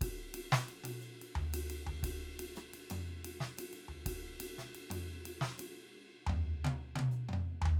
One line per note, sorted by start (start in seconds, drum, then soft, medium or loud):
0.01 kick medium
0.01 ride loud
0.34 ride loud
0.51 snare loud
0.51 hi-hat pedal medium
0.68 ride medium
0.84 high tom medium
0.84 ride loud
1.01 hi-hat pedal soft
1.21 ride medium
1.35 floor tom loud
1.53 hi-hat pedal medium
1.53 ride loud
1.70 ride medium
1.86 floor tom medium
2.03 kick medium
2.03 ride loud
2.39 ride loud
2.56 cross-stick medium
2.56 hi-hat pedal medium
2.73 ride medium
2.90 mid tom loud
2.90 ride bell medium
3.04 hi-hat pedal soft
3.24 ride loud
3.40 snare medium
3.57 hi-hat pedal medium
3.57 ride loud
3.73 ride medium
3.88 floor tom medium
4.06 kick medium
4.06 ride loud
4.40 ride loud
4.58 snare medium
4.58 hi-hat pedal medium
4.75 ride medium
4.90 mid tom medium
4.90 ride loud
5.25 ride loud
5.41 snare medium
5.58 hi-hat pedal medium
5.58 ride loud
6.26 floor tom loud
6.26 mid tom loud
6.64 high tom loud
6.66 high tom loud
6.95 high tom loud
6.99 high tom loud
7.11 hi-hat pedal soft
7.28 mid tom loud
7.33 mid tom loud
7.62 floor tom loud
7.65 floor tom loud